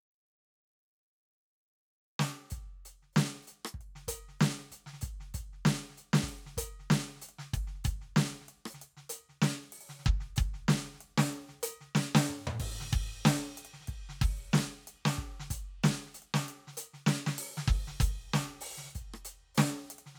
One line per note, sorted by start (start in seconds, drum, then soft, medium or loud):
2.19 snare medium
2.50 closed hi-hat medium
2.50 kick medium
2.85 closed hi-hat medium
3.02 snare soft
3.13 snare loud
3.13 hi-hat pedal soft
3.36 snare soft
3.42 hi-hat pedal soft
3.47 closed hi-hat medium
3.65 cross-stick medium
3.74 kick medium
3.81 closed hi-hat soft
3.95 snare soft
4.08 closed hi-hat loud
4.08 kick medium
4.28 snare soft
4.39 snare loud
4.39 hi-hat pedal soft
4.58 snare soft
4.68 kick soft
4.68 snare soft
4.72 closed hi-hat medium
4.86 snare soft
4.93 snare soft
5.01 closed hi-hat medium
5.01 kick medium
5.20 snare soft
5.34 closed hi-hat medium
5.34 kick medium
5.53 snare soft
5.65 snare loud
5.80 snare soft
5.89 snare soft
5.97 closed hi-hat soft
6.13 snare loud
6.23 kick medium
6.28 open hi-hat soft
6.38 hi-hat pedal soft
6.46 snare soft
6.57 closed hi-hat loud
6.57 kick medium
6.79 snare soft
6.90 snare loud
6.90 hi-hat pedal soft
7.06 snare soft
7.16 snare soft
7.22 closed hi-hat medium
7.29 closed hi-hat soft
7.39 snare medium
7.53 kick loud
7.53 closed hi-hat medium
7.67 snare soft
7.75 snare soft
7.84 closed hi-hat medium
7.84 kick loud
8.01 snare soft
8.16 snare loud
8.31 snare soft
8.41 snare soft
8.48 closed hi-hat soft
8.65 cross-stick medium
8.70 hi-hat pedal medium
8.74 snare soft
8.81 closed hi-hat medium
8.97 snare soft
9.09 closed hi-hat loud
9.29 snare soft
9.42 snare loud
9.55 snare soft
9.59 snare soft
9.63 snare soft
9.72 open hi-hat medium
9.81 open hi-hat soft
9.89 snare soft
10.05 kick loud
10.05 hi-hat pedal soft
10.05 open hi-hat soft
10.20 snare soft
10.36 closed hi-hat medium
10.36 kick loud
10.53 snare soft
10.68 snare loud
10.84 snare soft
10.93 snare soft
11.01 closed hi-hat soft
11.18 snare loud
11.23 hi-hat pedal soft
11.33 open hi-hat soft
11.49 snare soft
11.60 closed hi-hat loud
11.60 hi-hat pedal soft
11.81 snare soft
11.95 snare loud
12.15 snare loud
12.27 hi-hat pedal soft
12.27 high tom medium
12.47 high tom loud
12.60 kick medium
12.60 crash medium
12.80 snare medium
12.93 kick loud
12.93 closed hi-hat medium
13.25 snare loud
13.25 hi-hat pedal soft
13.48 snare soft
13.55 closed hi-hat medium
13.55 hi-hat pedal soft
13.65 closed hi-hat soft
13.73 snare soft
13.81 snare soft
13.87 kick medium
13.87 closed hi-hat soft
14.09 snare soft
14.21 kick loud
14.21 open hi-hat medium
14.53 snare loud
14.58 cross-stick medium
14.87 closed hi-hat medium
15.05 snare loud
15.18 kick medium
15.40 snare medium
15.50 closed hi-hat medium
15.50 kick medium
15.83 snare loud
15.83 hi-hat pedal medium
15.99 snare soft
16.06 snare soft
16.14 closed hi-hat medium
16.22 open hi-hat soft
16.34 snare loud
16.48 closed hi-hat medium
16.67 snare soft
16.73 hi-hat pedal soft
16.77 closed hi-hat loud
16.93 snare soft
17.06 snare loud
17.06 hi-hat pedal soft
17.26 snare medium
17.38 open hi-hat medium
17.57 snare medium
17.68 kick loud
17.68 crash soft
17.87 snare soft
18.00 closed hi-hat loud
18.00 kick loud
18.33 snare loud
18.33 hi-hat pedal soft
18.44 snare soft
18.61 open hi-hat medium
18.70 open hi-hat soft
18.78 snare soft
18.85 snare soft
18.85 hi-hat pedal soft
18.95 closed hi-hat soft
18.95 kick medium
19.14 cross-stick medium
19.25 closed hi-hat medium
19.55 snare loud
19.55 closed hi-hat medium
19.55 hi-hat pedal medium
19.72 snare soft
19.90 closed hi-hat medium
19.98 closed hi-hat soft
20.06 snare soft
20.15 snare soft